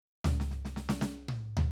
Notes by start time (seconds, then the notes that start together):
0.24 snare, floor tom
0.40 snare
0.51 snare
0.65 snare
0.76 snare
0.89 snare
1.01 snare
1.29 high tom
1.57 floor tom